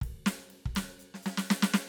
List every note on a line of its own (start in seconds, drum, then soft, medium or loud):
0.01 kick medium
0.01 ride medium
0.26 snare loud
0.26 ride medium
0.50 ride medium
0.66 kick medium
0.75 snare loud
0.75 ride medium
0.99 hi-hat pedal medium
1.14 snare medium
1.22 snare loud
1.22 hi-hat pedal medium
1.37 snare loud
1.46 hi-hat pedal medium
1.50 snare loud
1.62 snare loud
1.74 snare loud